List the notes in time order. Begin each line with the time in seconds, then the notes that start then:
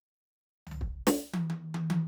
0.67 floor tom
0.71 floor tom
0.81 kick
1.07 snare
1.34 high tom
1.50 high tom
1.74 high tom
1.90 high tom